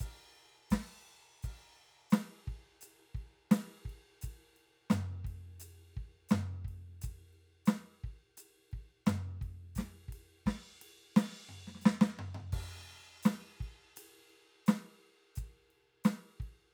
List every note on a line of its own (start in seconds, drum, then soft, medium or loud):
0.01 kick soft
0.01 hi-hat pedal medium
0.01 crash soft
0.36 ride soft
0.72 kick soft
0.72 snare medium
0.72 hi-hat pedal medium
0.72 crash soft
1.10 ride soft
1.44 kick soft
1.44 hi-hat pedal soft
1.44 crash soft
2.11 snare loud
2.11 hi-hat pedal medium
2.11 ride medium
2.49 kick soft
2.49 ride soft
2.82 hi-hat pedal medium
2.82 ride soft
3.16 kick soft
3.16 ride soft
3.52 snare loud
3.52 hi-hat pedal medium
3.52 ride medium
3.86 kick soft
3.91 ride soft
4.22 kick soft
4.22 hi-hat pedal medium
4.22 ride medium
4.57 ride soft
4.91 snare loud
4.91 floor tom loud
4.91 hi-hat pedal medium
5.26 kick soft
5.26 ride soft
5.61 hi-hat pedal medium
5.61 ride medium
5.96 kick soft
5.96 ride soft
6.30 snare loud
6.30 floor tom loud
6.30 hi-hat pedal medium
6.66 kick soft
6.66 ride soft
7.03 kick soft
7.03 hi-hat pedal medium
7.03 ride soft
7.34 ride soft
7.67 snare loud
7.67 hi-hat pedal medium
7.67 ride medium
8.05 kick soft
8.38 hi-hat pedal medium
8.38 ride soft
8.73 kick soft
8.73 ride soft
9.07 snare loud
9.07 floor tom loud
9.07 hi-hat pedal medium
9.42 kick soft
9.42 ride soft
9.76 kick soft
9.76 snare medium
9.76 hi-hat pedal medium
9.76 ride medium
10.09 kick soft
10.14 ride soft
10.47 kick soft
10.47 snare medium
10.47 ride medium
10.83 ride medium
11.17 snare loud
11.17 hi-hat pedal medium
11.17 ride medium
11.50 floor tom soft
11.68 snare soft
11.76 snare soft
11.82 snare soft
11.82 hi-hat pedal soft
11.87 snare loud
12.02 snare loud
12.20 floor tom medium
12.36 floor tom medium
12.54 kick medium
12.54 crash medium
12.87 ride soft
13.24 snare loud
13.24 hi-hat pedal medium
13.24 ride medium
13.61 kick soft
13.61 ride soft
13.97 hi-hat pedal medium
13.97 ride medium
14.31 ride soft
14.67 snare loud
14.67 hi-hat pedal medium
14.67 ride medium
15.36 kick soft
15.36 hi-hat pedal medium
15.36 ride soft
15.72 ride soft
16.05 snare loud
16.05 hi-hat pedal medium
16.05 ride medium
16.41 kick soft
16.41 ride soft